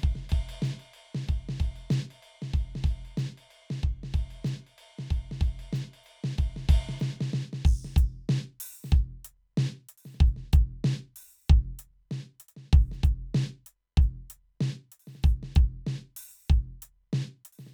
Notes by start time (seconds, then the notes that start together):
0.01 kick, ride
0.16 snare
0.30 kick, ride
0.49 ride
0.63 snare, hi-hat pedal
0.80 ride
0.94 ride
1.15 snare
1.28 kick, ride
1.49 snare
1.60 kick, ride
1.76 ride
1.91 snare, hi-hat pedal
2.11 ride
2.23 ride
2.43 snare
2.54 kick, ride
2.76 snare
2.85 kick, ride
3.06 ride
3.18 snare, hi-hat pedal
3.38 ride
3.51 ride
3.71 snare
3.84 kick
4.04 snare
4.15 kick, ride
4.31 ride
4.45 snare, hi-hat pedal
4.67 ride
4.79 ride
4.99 snare
5.11 kick, ride
5.32 snare
5.42 kick, ride
5.60 ride
5.73 snare, hi-hat pedal
5.94 ride
6.04 hi-hat pedal, ride
6.25 snare
6.39 kick, ride
6.57 snare
6.69 kick, ride
6.89 snare
7.00 snare, hi-hat pedal
7.21 snare
7.34 snare
7.54 snare
7.66 kick, crash
7.85 snare
7.97 closed hi-hat, kick
8.30 snare
8.61 open hi-hat
8.85 snare
8.93 kick
9.25 closed hi-hat
9.58 snare
9.66 snare
9.89 closed hi-hat
9.98 open hi-hat
10.06 snare
10.15 snare
10.21 kick
10.28 hi-hat pedal
10.37 snare
10.54 closed hi-hat, kick
10.85 snare
11.17 open hi-hat
11.49 kick, hi-hat pedal
11.80 closed hi-hat
12.12 snare
12.41 closed hi-hat
12.49 closed hi-hat
12.57 snare
12.68 snare
12.73 kick, open hi-hat
12.92 snare, hi-hat pedal
13.04 kick, closed hi-hat
13.35 snare
13.67 open hi-hat
13.98 kick, hi-hat pedal
14.31 closed hi-hat
14.61 snare
14.93 open hi-hat
15.00 open hi-hat
15.08 snare
15.16 snare
15.24 open hi-hat, kick
15.31 hi-hat pedal
15.44 snare
15.56 kick, closed hi-hat
15.87 snare
16.17 open hi-hat
16.50 kick, hi-hat pedal
16.83 closed hi-hat
17.14 snare
17.46 open hi-hat
17.53 open hi-hat
17.60 snare
17.67 snare